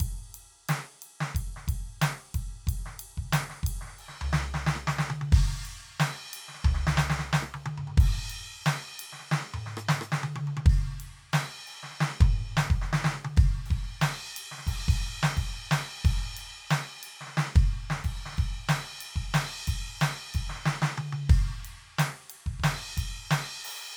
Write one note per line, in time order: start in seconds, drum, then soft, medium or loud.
0.02 kick medium
0.02 ride loud
0.34 ride medium
0.69 snare loud
0.69 hi-hat pedal medium
0.69 ride loud
1.02 hi-hat pedal soft
1.02 ride medium
1.20 snare loud
1.34 kick medium
1.34 ride loud
1.56 snare soft
1.68 kick medium
1.68 hi-hat pedal soft
1.68 ride loud
2.01 snare loud
2.01 ride loud
2.34 kick medium
2.34 ride medium
2.67 kick medium
2.67 ride loud
2.86 snare soft
2.99 ride loud
3.17 kick medium
3.32 snare loud
3.32 ride loud
3.50 snare soft
3.63 kick medium
3.63 ride loud
3.81 snare soft
3.87 snare soft
3.98 ride medium
4.08 snare soft
4.14 snare soft
4.21 floor tom loud
4.33 snare loud
4.54 snare medium
4.66 snare loud
4.75 cross-stick medium
4.87 snare loud
4.98 snare loud
5.10 high tom loud
5.21 high tom medium
5.32 kick loud
5.32 crash loud
5.65 ride medium
6.00 snare loud
6.00 ride loud
6.33 ride loud
6.48 snare soft
6.54 snare soft
6.60 snare soft
6.64 kick medium
6.64 floor tom loud
6.74 snare medium
6.87 snare loud
6.97 snare loud
7.10 snare loud
7.19 snare medium
7.33 snare loud
7.42 cross-stick medium
7.54 high tom medium
7.66 high tom loud
7.78 mid tom medium
7.87 mid tom medium
7.97 kick loud
7.97 ride loud
8.30 ride medium
8.66 snare loud
8.66 ride medium
8.99 ride loud
9.12 snare soft
9.19 snare soft
9.31 snare loud
9.43 snare soft
9.54 mid tom loud
9.66 snare medium
9.77 cross-stick medium
9.88 snare loud
10.01 cross-stick medium
10.12 snare loud
10.23 high tom loud
10.36 high tom loud
10.47 high tom medium
10.57 high tom loud
10.66 kick loud
10.66 crash medium
11.00 ride medium
11.33 snare loud
11.33 ride loud
11.67 ride medium
11.83 snare medium
11.91 snare soft
12.00 snare loud
12.20 kick loud
12.20 mid tom loud
12.57 snare loud
12.70 kick loud
12.70 mid tom medium
12.81 snare medium
12.93 snare loud
13.04 snare loud
13.15 high tom medium
13.24 high tom loud
13.37 kick loud
13.37 crash medium
13.66 ride medium
13.70 kick medium
14.01 snare loud
14.01 ride loud
14.36 ride loud
14.51 snare soft
14.58 snare soft
14.67 kick medium
14.67 ride loud
14.88 kick loud
14.88 ride medium
15.23 snare loud
15.37 kick medium
15.37 ride medium
15.71 snare loud
15.71 ride loud
16.04 kick loud
16.04 ride loud
16.37 ride medium
16.70 snare loud
16.70 ride medium
17.03 ride medium
17.21 snare medium
17.27 snare soft
17.37 snare loud
17.55 kick loud
17.55 crash medium
17.90 snare loud
18.04 kick medium
18.04 ride medium
18.25 snare medium
18.32 snare soft
18.37 kick medium
18.37 ride medium
18.69 snare loud
18.69 ride loud
18.91 snare soft
19.00 ride medium
19.16 kick medium
19.34 snare loud
19.34 ride loud
19.67 kick medium
19.67 ride medium
20.01 snare loud
20.01 ride loud
20.34 kick medium
20.34 ride medium
20.49 snare medium
20.55 snare soft
20.82 snare loud
20.98 high tom loud
21.12 high tom loud
21.29 kick loud
21.29 crash medium
21.65 ride medium
21.98 snare loud
21.98 ride loud
22.30 ride medium
22.46 kick medium
22.59 kick soft
22.63 snare loud
22.63 ride loud
22.97 kick medium
22.97 ride medium
23.31 snare loud
23.31 ride loud
23.64 open hi-hat loud
23.64 ride loud